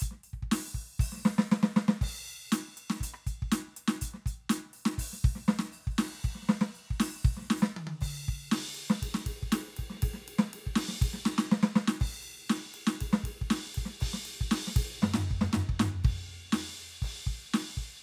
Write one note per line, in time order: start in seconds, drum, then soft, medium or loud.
0.01 closed hi-hat loud
0.01 kick medium
0.12 snare soft
0.25 open hi-hat soft
0.34 kick soft
0.44 kick medium
0.53 open hi-hat loud
0.53 snare loud
0.76 kick medium
0.76 open hi-hat soft
1.01 open hi-hat loud
1.01 kick loud
1.13 snare soft
1.18 snare soft
1.26 snare loud
1.39 snare loud
1.53 snare loud
1.64 snare loud
1.77 snare loud
1.89 snare loud
2.02 kick medium
2.02 hi-hat pedal soft
2.02 crash loud
2.28 closed hi-hat medium
2.53 closed hi-hat loud
2.53 snare loud
2.78 closed hi-hat medium
2.91 snare loud
3.02 closed hi-hat loud
3.02 kick medium
3.15 cross-stick medium
3.28 closed hi-hat medium
3.28 kick medium
3.43 kick medium
3.53 closed hi-hat loud
3.53 snare loud
3.78 closed hi-hat medium
3.89 snare loud
4.02 closed hi-hat loud
4.02 kick medium
4.15 snare soft
4.27 closed hi-hat medium
4.27 kick medium
4.51 closed hi-hat loud
4.51 snare loud
4.74 open hi-hat medium
4.87 snare loud
4.99 open hi-hat loud
4.99 kick medium
5.14 snare soft
5.25 open hi-hat medium
5.25 kick loud
5.36 snare soft
5.49 snare loud
5.60 snare loud
5.73 open hi-hat medium
5.88 kick medium
5.99 snare loud
5.99 crash medium
6.24 open hi-hat medium
6.24 kick medium
6.36 snare soft
6.43 snare soft
6.50 snare loud
6.62 snare loud
6.75 open hi-hat medium
6.92 kick medium
7.01 open hi-hat loud
7.01 snare loud
7.25 open hi-hat medium
7.25 kick loud
7.38 snare soft
7.43 snare soft
7.51 snare loud
7.58 hi-hat pedal medium
7.63 snare loud
7.78 high tom loud
7.88 high tom loud
8.02 kick medium
8.02 hi-hat pedal medium
8.02 crash medium
8.29 kick medium
8.52 snare loud
8.52 hi-hat pedal soft
8.52 ride loud
8.76 hi-hat pedal soft
8.76 ride medium
8.91 snare loud
9.03 kick medium
9.03 ride loud
9.15 snare loud
9.27 kick medium
9.27 ride loud
9.44 kick medium
9.53 snare loud
9.53 ride loud
9.78 kick medium
9.78 ride medium
9.91 snare medium
9.96 snare soft
10.03 kick loud
10.03 ride loud
10.15 snare soft
10.22 snare soft
10.29 ride loud
10.40 snare loud
10.54 ride loud
10.68 kick medium
10.77 snare loud
10.77 ride loud
10.89 snare medium
10.94 snare soft
11.03 kick loud
11.03 ride loud
11.14 snare medium
11.27 snare loud
11.39 snare loud
11.53 snare loud
11.64 snare loud
11.77 snare loud
11.89 snare loud
12.01 kick loud
12.01 crash medium
12.24 ride medium
12.51 snare loud
12.51 ride medium
12.75 ride medium
12.88 snare loud
13.02 kick medium
13.02 ride loud
13.14 snare loud
13.25 kick medium
13.25 ride loud
13.42 kick medium
13.51 snare loud
13.51 ride loud
13.76 kick medium
13.76 ride medium
13.87 snare medium
13.98 snare soft
13.98 ride loud
14.03 kick medium
14.14 snare medium
14.26 ride medium
14.42 kick medium
14.52 snare loud
14.52 ride loud
14.68 snare medium
14.77 kick loud
14.77 ride loud
15.03 snare loud
15.03 floor tom loud
15.15 snare loud
15.15 floor tom loud
15.32 kick medium
15.42 snare loud
15.42 floor tom loud
15.54 snare loud
15.54 floor tom loud
15.70 kick medium
15.81 snare loud
15.81 floor tom loud
16.05 kick loud
16.05 ride medium
16.54 snare loud
16.54 ride loud
17.03 kick medium
17.03 ride loud
17.28 kick medium
17.55 snare loud
17.55 ride loud
17.78 kick medium